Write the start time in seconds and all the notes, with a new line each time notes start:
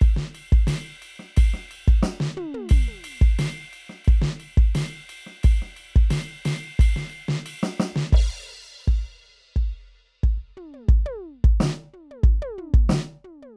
0.01 kick, ride
0.17 snare
0.35 ride
0.52 kick
0.67 snare, ride
1.02 ride
1.20 snare
1.37 kick, ride
1.54 snare
1.71 ride
1.88 kick
2.03 snare
2.20 snare
2.37 floor tom
2.54 mid tom
2.69 kick, ride
2.88 mid tom
3.04 ride bell
3.22 kick
3.39 snare, ride
3.73 ride
3.90 snare
4.05 kick, ride
4.22 snare
4.40 ride
4.58 kick
4.75 snare, ride
5.09 ride
5.27 snare
5.44 kick, ride
5.62 snare
5.77 ride
5.96 kick, snare
6.11 snare, ride
6.45 snare, ride
6.79 kick, ride
6.96 snare
7.10 ride bell
7.29 snare
7.46 ride
7.63 snare
7.80 snare
7.92 kick
7.96 snare
8.10 kick, snare, crash
8.88 kick
9.56 kick
10.24 kick
10.38 kick
10.57 floor tom
10.74 high tom
10.89 kick
11.06 high tom
11.44 kick
11.61 snare
11.63 snare
11.93 floor tom
12.11 high tom
12.24 kick
12.42 high tom
12.58 floor tom
12.74 kick
12.90 snare
12.92 snare
13.24 floor tom
13.42 high tom